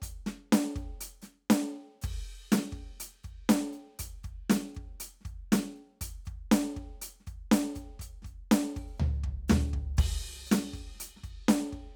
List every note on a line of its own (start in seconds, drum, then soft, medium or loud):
0.02 closed hi-hat loud
0.02 kick medium
0.02 snare soft
0.26 closed hi-hat medium
0.26 snare medium
0.53 closed hi-hat loud
0.53 snare loud
0.76 closed hi-hat soft
0.76 kick medium
1.01 closed hi-hat loud
1.22 closed hi-hat soft
1.22 snare soft
1.22 hi-hat pedal medium
1.50 closed hi-hat loud
1.50 snare loud
2.02 kick medium
2.02 hi-hat pedal medium
2.02 crash medium
2.52 closed hi-hat loud
2.52 snare loud
2.57 snare medium
2.72 kick medium
2.72 closed hi-hat soft
3.00 closed hi-hat loud
3.24 closed hi-hat soft
3.24 kick soft
3.49 closed hi-hat loud
3.49 snare loud
3.55 snare soft
3.73 closed hi-hat soft
3.99 closed hi-hat loud
3.99 kick soft
4.24 closed hi-hat soft
4.24 kick medium
4.50 closed hi-hat loud
4.50 snare loud
4.75 kick soft
4.75 closed hi-hat soft
5.00 closed hi-hat loud
5.21 snare soft
5.25 closed hi-hat soft
5.25 kick medium
5.52 closed hi-hat loud
5.52 snare loud
5.76 closed hi-hat soft
6.01 closed hi-hat loud
6.01 kick medium
6.26 closed hi-hat soft
6.26 kick medium
6.52 closed hi-hat loud
6.52 snare loud
6.77 kick soft
6.77 closed hi-hat soft
7.02 closed hi-hat loud
7.20 snare soft
7.27 closed hi-hat soft
7.27 kick soft
7.52 closed hi-hat loud
7.52 snare loud
7.75 closed hi-hat soft
7.75 kick soft
7.99 closed hi-hat medium
7.99 kick soft
8.22 closed hi-hat soft
8.22 kick soft
8.22 snare soft
8.51 closed hi-hat loud
8.51 snare loud
8.76 open hi-hat soft
8.76 kick medium
9.00 floor tom loud
9.24 kick medium
9.24 floor tom soft
9.48 snare loud
9.48 floor tom loud
9.48 hi-hat pedal medium
9.73 kick medium
9.73 floor tom soft
9.97 kick loud
9.97 hi-hat pedal medium
9.97 crash loud
10.46 hi-hat pedal medium
10.52 closed hi-hat loud
10.52 snare loud
10.74 closed hi-hat soft
10.74 kick medium
10.95 snare soft
11.00 closed hi-hat loud
11.17 snare soft
11.24 closed hi-hat soft
11.24 kick soft
11.49 closed hi-hat loud
11.49 snare loud
11.73 kick soft
11.73 closed hi-hat soft